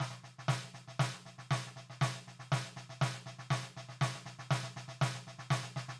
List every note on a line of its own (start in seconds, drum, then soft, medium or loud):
0.00 snare medium
0.10 snare soft
0.24 snare soft
0.39 snare soft
0.48 snare loud
0.64 snare soft
0.88 snare soft
0.99 snare loud
1.14 snare soft
1.26 snare soft
1.38 snare soft
1.51 snare loud
1.67 snare soft
1.76 snare soft
1.90 snare soft
2.01 snare loud
2.15 snare soft
2.27 snare soft
2.39 snare soft
2.52 snare loud
2.65 snare soft
2.76 snare medium
2.89 snare soft
3.01 snare loud
3.14 snare soft
3.26 snare medium
3.39 snare soft
3.50 snare loud
3.63 snare soft
3.77 snare medium
3.89 snare soft
4.01 snare loud
4.15 snare soft
4.26 snare medium
4.39 snare medium
4.51 snare loud
4.63 snare medium
4.76 snare medium
4.88 snare medium
5.01 snare loud
5.15 snare soft
5.27 snare soft
5.39 snare medium
5.50 snare loud
5.63 snare medium
5.76 snare medium
5.88 snare medium